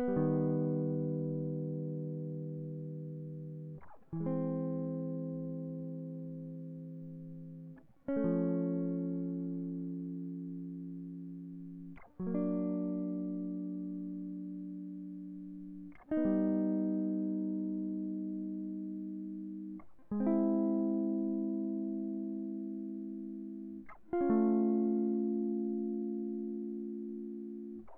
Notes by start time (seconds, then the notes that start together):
0.00 B3
0.09 G3
0.18 D#3
4.14 E3
4.21 G#3
4.27 C4
8.09 C#4
8.17 A3
8.25 F3
12.20 F#3
12.27 A#3
12.35 D4
16.12 D#4
16.18 B3
16.26 G3
20.12 G#3
20.21 C4
20.27 E4
24.13 F4
24.21 C#4
24.30 A3